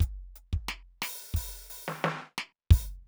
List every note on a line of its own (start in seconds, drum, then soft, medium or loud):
0.01 closed hi-hat loud
0.01 kick medium
0.36 closed hi-hat medium
0.53 kick medium
0.69 snare loud
0.69 closed hi-hat medium
1.02 snare loud
1.02 open hi-hat loud
1.35 open hi-hat loud
1.35 kick medium
1.70 open hi-hat loud
1.88 snare medium
2.05 snare loud
2.38 snare loud
2.71 open hi-hat loud
2.71 kick loud